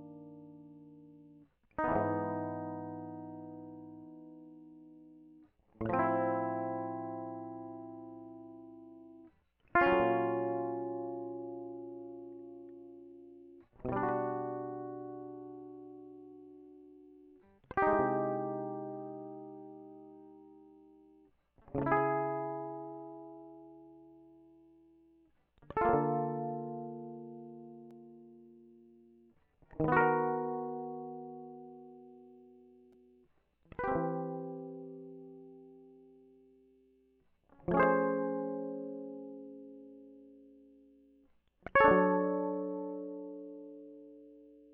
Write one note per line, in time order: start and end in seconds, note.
1.75 1.89 G#2
1.79 5.49 D#4
1.85 5.48 B3
1.90 5.42 E3
1.99 4.07 G#2
5.83 9.21 A2
5.91 9.28 F3
5.91 9.31 C4
6.00 9.33 E4
9.76 13.65 F4
9.82 13.65 C#4
9.88 13.40 F#3
10.02 12.00 A#2
13.87 16.41 B2
13.93 16.39 G3
13.93 17.41 D4
14.04 17.44 F#4
17.78 21.31 G4
17.83 21.31 D#4
17.88 21.02 G#3
18.01 20.30 C3
21.77 24.36 C#3
21.83 21.89 A3
21.87 25.32 E4
21.93 24.45 G#4
25.78 28.11 A4
25.82 29.36 A#3
25.82 29.36 F4
25.95 28.69 D3
29.82 32.30 D#3
29.89 33.27 B3
29.89 33.29 F#4
29.98 32.40 A#4
33.80 35.62 B4
33.85 37.25 G4
33.89 37.23 C4
33.97 36.31 E3
37.54 37.72 C#4
37.70 39.98 F3
37.75 41.30 C#4
37.75 41.28 G#4
37.80 40.82 C5
41.76 44.74 C#5
41.81 44.74 A4
41.85 44.74 D4
41.93 44.23 F#3